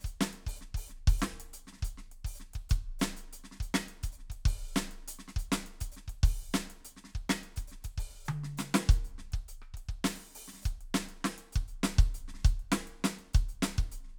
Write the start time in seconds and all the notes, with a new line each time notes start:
0.01 kick, snare, hi-hat pedal
0.06 closed hi-hat
0.21 snare
0.33 closed hi-hat
0.47 open hi-hat, kick
0.56 hi-hat pedal
0.61 snare
0.75 open hi-hat, kick
0.88 snare, hi-hat pedal
0.96 snare
1.08 open hi-hat, kick
1.19 snare, hi-hat pedal
1.40 closed hi-hat
1.54 closed hi-hat
1.67 snare
1.73 snare
1.77 snare
1.83 closed hi-hat, kick
1.98 snare
2.12 closed hi-hat
2.25 open hi-hat, kick
2.35 hi-hat pedal
2.40 snare
2.54 kick, closed hi-hat
2.70 closed hi-hat, kick
2.99 snare, hi-hat pedal
3.17 closed hi-hat, snare
3.33 closed hi-hat
3.44 snare
3.52 snare
3.55 snare
3.60 closed hi-hat, kick
3.74 snare
3.89 closed hi-hat
4.01 open hi-hat, kick, snare
4.12 hi-hat pedal
4.19 snare
4.30 kick, closed hi-hat
4.46 open hi-hat, kick
4.76 snare, hi-hat pedal
4.91 closed hi-hat
5.08 closed hi-hat
5.19 snare
5.28 snare
5.36 closed hi-hat, kick
5.52 snare
5.66 closed hi-hat
5.81 open hi-hat, kick
5.92 hi-hat pedal
5.97 snare
6.08 kick, closed hi-hat
6.23 open hi-hat, kick
6.54 snare, hi-hat pedal
6.70 closed hi-hat
6.85 closed hi-hat
6.97 snare
7.04 snare
7.08 snare
7.15 kick, closed hi-hat
7.30 snare
7.44 closed hi-hat
7.56 open hi-hat, kick
7.68 hi-hat pedal
7.72 snare
7.81 kick, snare, closed hi-hat
7.98 open hi-hat, kick
8.10 snare
8.13 snare
8.26 hi-hat pedal, high tom
8.44 snare
8.58 snare, hi-hat pedal
8.75 snare
8.89 closed hi-hat, kick
9.05 closed hi-hat
9.18 snare
9.32 kick, closed hi-hat
9.49 closed hi-hat
9.62 cross-stick
9.74 kick, closed hi-hat
9.89 kick
10.05 open hi-hat, snare
10.35 open hi-hat
10.48 snare
10.54 snare
10.57 snare
10.61 snare, hi-hat pedal
10.65 closed hi-hat, kick, snare
10.81 closed hi-hat
10.94 snare
11.02 snare
11.09 closed hi-hat
11.25 snare
11.33 snare
11.38 snare, closed hi-hat
11.53 closed hi-hat, kick
11.68 closed hi-hat
11.83 snare
11.97 kick, snare, closed hi-hat
12.15 closed hi-hat
12.28 snare
12.34 snare
12.38 snare
12.42 closed hi-hat, kick, snare
12.60 closed hi-hat
12.72 snare
12.87 closed hi-hat
13.04 snare
13.13 snare
13.19 closed hi-hat
13.34 closed hi-hat, kick
13.49 closed hi-hat
13.63 snare
13.78 kick, closed hi-hat
13.92 closed hi-hat
14.04 snare
14.07 snare